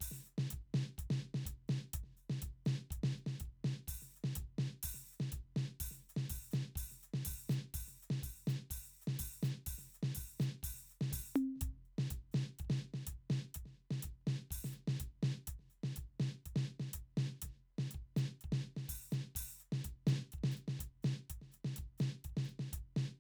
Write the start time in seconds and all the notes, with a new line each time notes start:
0.01 open hi-hat, kick
0.12 snare
0.26 hi-hat pedal
0.39 snare
0.51 closed hi-hat, kick
0.75 snare
0.98 closed hi-hat, kick
1.03 kick
1.11 snare
1.35 snare
1.46 closed hi-hat, kick
1.51 kick
1.68 snare, hi-hat pedal
1.94 closed hi-hat, kick
2.04 snare
2.17 open hi-hat, hi-hat pedal
2.30 snare
2.42 closed hi-hat, kick
2.66 snare, hi-hat pedal
2.91 closed hi-hat, kick
2.96 kick
3.04 snare
3.19 closed hi-hat
3.27 snare
3.40 closed hi-hat, kick
3.46 kick
3.65 snare
3.88 open hi-hat, kick
3.93 kick
4.03 snare
4.16 hi-hat pedal
4.24 snare
4.36 closed hi-hat, kick
4.42 kick
4.59 snare
4.83 open hi-hat, kick
4.95 snare
5.07 open hi-hat
5.13 hi-hat pedal
5.20 snare
5.32 closed hi-hat, kick
5.38 kick
5.57 snare
5.81 open hi-hat, kick
5.85 kick
5.92 snare
6.06 hi-hat pedal, open hi-hat
6.17 snare
6.30 open hi-hat, kick
6.35 kick
6.51 snare, hi-hat pedal
6.76 open hi-hat, kick
6.92 snare
7.03 open hi-hat, hi-hat pedal
7.14 snare
7.25 open hi-hat, kick
7.32 kick
7.50 snare, hi-hat pedal
7.74 open hi-hat, kick
7.79 kick
7.88 snare
7.99 open hi-hat, hi-hat pedal
8.11 snare
8.23 open hi-hat, kick
8.48 snare, hi-hat pedal
8.71 open hi-hat, kick
8.96 open hi-hat
9.02 hi-hat pedal
9.08 snare
9.19 open hi-hat, kick
9.43 snare, hi-hat pedal
9.67 open hi-hat, kick
9.72 kick
9.79 snare
9.92 open hi-hat, hi-hat pedal
10.03 snare
10.15 open hi-hat, kick
10.40 snare, hi-hat pedal
10.63 open hi-hat, kick
10.68 kick
10.74 snare
10.89 hi-hat pedal, open hi-hat
11.01 snare
11.12 open hi-hat, kick, snare
11.18 kick
11.36 hi-hat pedal, high tom
11.56 snare
11.61 closed hi-hat, kick
11.86 closed hi-hat
11.99 snare
12.11 closed hi-hat, kick
12.32 snare, hi-hat pedal
12.59 kick, closed hi-hat
12.65 kick
12.70 snare
12.77 hi-hat pedal
12.94 snare
13.07 closed hi-hat, kick
13.12 kick
13.30 snare
13.55 closed hi-hat, kick
13.66 snare
13.91 snare
14.03 closed hi-hat, kick
14.27 snare
14.51 open hi-hat, kick
14.56 kick
14.65 snare
14.72 hi-hat pedal
14.77 closed hi-hat
14.88 snare
15.00 closed hi-hat, kick
15.23 snare
15.48 closed hi-hat, kick
15.60 snare
15.70 closed hi-hat, hi-hat pedal
15.84 snare
15.96 closed hi-hat, kick
16.20 snare
16.46 kick, closed hi-hat
16.56 snare
16.80 snare
16.94 closed hi-hat, kick
17.18 snare
17.28 snare
17.42 closed hi-hat, kick, snare
17.79 snare
17.91 kick, closed hi-hat
18.17 snare, hi-hat pedal
18.41 kick, closed hi-hat
18.53 snare
18.77 snare
18.89 open hi-hat, kick
19.11 snare, hi-hat pedal
19.36 open hi-hat, kick
19.41 snare
19.60 open hi-hat, hi-hat pedal
19.73 snare
19.85 closed hi-hat, kick
19.90 kick
20.07 snare, hi-hat pedal
20.13 snare
20.32 kick, closed hi-hat
20.39 kick
20.44 snare
20.52 hi-hat pedal
20.57 closed hi-hat
20.68 snare
20.80 closed hi-hat, kick
20.84 kick
21.03 snare, hi-hat pedal
21.30 closed hi-hat, kick
21.42 snare
21.52 closed hi-hat, hi-hat pedal
21.65 snare
21.77 closed hi-hat, kick
21.98 snare, hi-hat pedal
22.25 kick, closed hi-hat
22.30 kick
22.37 snare
22.44 hi-hat pedal
22.49 closed hi-hat
22.60 snare
22.73 closed hi-hat, kick
22.78 kick
22.97 snare